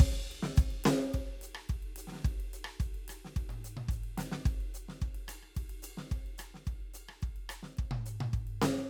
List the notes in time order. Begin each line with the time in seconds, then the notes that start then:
0.01 kick, ride bell
0.13 snare
0.32 ride
0.43 snare
0.57 kick, hi-hat pedal, ride
0.71 ride
0.80 kick
0.85 snare, ride
1.00 cross-stick
1.15 kick, ride
1.28 cross-stick
1.42 hi-hat pedal, ride
1.56 cross-stick
1.70 kick, hi-hat pedal, ride
1.83 ride
1.97 hi-hat pedal, ride
2.08 snare
2.13 snare
2.16 snare
2.20 snare
2.24 kick, snare, hi-hat pedal, ride
2.41 ride
2.54 hi-hat pedal, ride
2.65 cross-stick
2.81 kick, hi-hat pedal, ride
2.95 ride
3.09 cross-stick, hi-hat pedal, ride
3.25 snare
3.37 kick, ride
3.50 high tom, ride
3.65 hi-hat pedal, ride
3.78 high tom
3.89 kick, hi-hat pedal, ride
4.05 ride
4.18 snare, hi-hat pedal, ride
4.32 snare
4.46 kick, hi-hat pedal, ride
4.61 ride
4.75 hi-hat pedal, ride
4.89 snare
5.01 kick, hi-hat pedal, ride bell
5.16 ride
5.29 cross-stick, hi-hat pedal, ride bell
5.44 cross-stick
5.55 kick, hi-hat pedal, ride
5.70 ride
5.83 hi-hat pedal, ride bell
5.98 snare
6.10 kick, hi-hat pedal, ride
6.27 ride
6.39 cross-stick, hi-hat pedal, ride bell
6.55 snare
6.66 kick, hi-hat pedal, ride
6.81 ride
6.94 hi-hat pedal, ride bell
7.09 cross-stick
7.21 kick, hi-hat pedal, ride
7.37 ride
7.50 cross-stick, hi-hat pedal, ride bell
7.63 snare
7.78 kick, ride
7.92 high tom
8.06 hi-hat pedal, ride
8.21 high tom
8.34 kick, hi-hat pedal, ride
8.48 ride
8.63 snare, hi-hat pedal, ride bell
8.78 snare